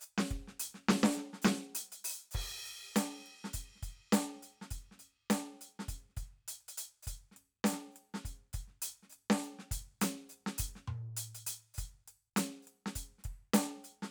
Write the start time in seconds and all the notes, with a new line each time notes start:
0.01 hi-hat pedal
0.18 snare
0.31 kick, closed hi-hat
0.37 kick
0.40 kick
0.48 snare
0.52 kick
0.60 closed hi-hat
0.74 snare
0.89 snare
1.03 snare
1.12 hi-hat pedal
1.17 snare
1.33 snare
1.42 snare, hi-hat pedal
1.75 closed hi-hat
1.92 closed hi-hat
2.04 open hi-hat
2.31 kick, hi-hat pedal, crash
2.41 kick
2.44 kick
2.66 closed hi-hat
2.96 closed hi-hat, snare
3.26 closed hi-hat
3.44 snare
3.54 closed hi-hat, kick
3.75 snare
3.83 closed hi-hat, kick
3.91 kick
4.12 closed hi-hat, snare
4.43 closed hi-hat
4.62 snare
4.71 closed hi-hat, kick
4.91 snare
4.98 closed hi-hat, snare
5.30 closed hi-hat, snare
5.44 snare
5.61 closed hi-hat
5.79 snare
5.88 closed hi-hat, kick
5.94 kick
6.09 snare
6.17 closed hi-hat, kick
6.23 kick
6.48 closed hi-hat
6.61 closed hi-hat
6.68 closed hi-hat
6.78 closed hi-hat
7.03 hi-hat pedal
7.07 closed hi-hat, kick
7.31 snare
7.36 closed hi-hat
7.64 closed hi-hat, snare
7.70 snare, closed hi-hat
7.92 hi-hat pedal
7.96 closed hi-hat
8.14 snare
8.25 closed hi-hat, kick
8.53 closed hi-hat, kick, snare
8.62 kick
8.68 snare
8.70 snare
8.82 closed hi-hat
9.03 snare
9.10 closed hi-hat, hi-hat pedal
9.30 snare
9.43 closed hi-hat
9.59 snare
9.71 closed hi-hat, kick
9.77 kick
9.80 kick
10.01 closed hi-hat, snare
10.29 closed hi-hat, hi-hat pedal
10.46 snare
10.58 closed hi-hat, kick
10.66 kick
10.69 kick
10.75 snare
10.88 mid tom
11.17 closed hi-hat
11.35 closed hi-hat
11.47 closed hi-hat
11.74 closed hi-hat, hi-hat pedal
11.78 kick
11.84 kick
12.08 closed hi-hat
12.36 closed hi-hat, snare
12.62 hi-hat pedal
12.67 closed hi-hat
12.86 snare
12.95 closed hi-hat, kick
13.19 snare
13.24 kick, closed hi-hat
13.54 closed hi-hat, snare
13.65 snare
13.84 closed hi-hat
14.02 snare